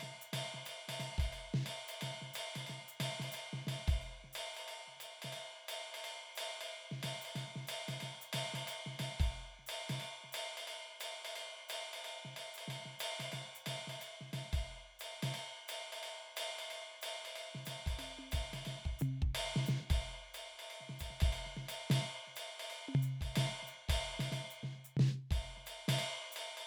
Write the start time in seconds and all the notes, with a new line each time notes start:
0.01 snare, ride
0.22 hi-hat pedal
0.34 snare, ride
0.55 snare
0.66 hi-hat pedal, ride
0.89 snare, ride
1.00 snare, ride
1.19 kick, ride
1.33 ride
1.55 snare
1.67 ride
1.89 hi-hat pedal, ride
2.02 snare, ride
2.22 snare
2.34 hi-hat pedal, ride
2.56 snare, ride
2.67 snare, ride
2.89 hi-hat pedal
3.01 snare, ride
3.20 snare, ride
3.32 hi-hat pedal, ride
3.54 snare
3.68 snare, ride
3.88 kick, ride
4.02 ride
4.25 snare
4.33 hi-hat pedal, ride
4.54 hi-hat pedal, ride
4.69 ride
4.88 snare
4.97 snare, ride
5.01 hi-hat pedal
5.23 snare, ride
5.33 ride
5.69 hi-hat pedal, ride
5.95 ride
6.05 ride
6.36 hi-hat pedal, ride
6.62 ride
6.92 snare
7.04 snare, ride
7.22 hi-hat pedal, ride
7.36 snare, ride
7.57 snare
7.68 hi-hat pedal, ride
7.89 snare, ride
8.01 snare, ride
8.22 hi-hat pedal
8.34 snare, ride
8.55 snare, ride
8.68 hi-hat pedal, ride
8.87 snare
9.00 snare, ride
9.21 kick, ride
9.60 snare
9.67 hi-hat pedal, ride
9.89 snare, hi-hat pedal, ride
10.00 ride
10.25 snare
10.33 hi-hat pedal, ride
10.58 ride
10.68 ride
11.01 hi-hat pedal, ride
11.25 ride
11.36 ride
11.69 hi-hat pedal, ride
11.94 ride
12.05 ride
12.26 snare
12.37 ride
12.55 hi-hat pedal
12.59 ride
12.69 snare, ride
12.86 snare
13.00 hi-hat pedal, ride
13.20 snare, ride
13.33 snare, ride
13.56 hi-hat pedal
13.67 snare, ride
13.88 snare, ride
14.02 hi-hat pedal, ride
14.22 snare
14.34 snare, ride
14.54 kick, ride
15.00 hi-hat pedal, ride
15.23 snare, ride
15.35 ride
15.69 hi-hat pedal, ride
15.93 ride
16.04 ride
16.37 hi-hat pedal, ride
16.57 hi-hat pedal, ride
16.71 ride
17.02 hi-hat pedal, ride
17.26 ride
17.36 ride
17.56 snare
17.66 snare, hi-hat pedal, ride
17.87 kick, ride
17.99 high tom, ride
18.07 hi-hat pedal
18.19 high tom
18.32 kick, hi-hat pedal, ride
18.54 snare, ride
18.66 snare, ride
18.86 kick
19.00 floor tom, hi-hat pedal, high tom
19.23 kick
19.35 ride
19.57 snare
19.67 snare, hi-hat pedal
19.81 snare
19.91 kick, ride
20.35 hi-hat pedal, ride
20.60 ride
20.71 ride
20.81 snare
20.90 snare
21.00 kick, hi-hat pedal, ride
21.11 snare
21.21 kick, ride
21.33 ride
21.47 snare
21.57 snare
21.69 hi-hat pedal, ride
21.91 snare, ride
22.28 snare
22.37 hi-hat pedal, ride
22.60 ride
22.71 ride
22.78 hi-hat pedal
22.89 high tom
22.96 floor tom
23.03 hi-hat pedal
23.22 kick, ride
23.36 snare, ride
23.44 hi-hat pedal
23.63 snare
23.68 hi-hat pedal
23.89 kick, ride
24.20 snare, ride
24.33 snare, ride
24.51 hi-hat pedal
24.64 snare, floor tom
24.85 hi-hat pedal
24.98 snare, floor tom
25.08 hi-hat pedal
25.19 snare
25.32 kick, ride
25.58 snare
25.67 hi-hat pedal, ride
25.89 snare, ride
25.99 ride
26.33 hi-hat pedal
26.37 ride
26.58 ride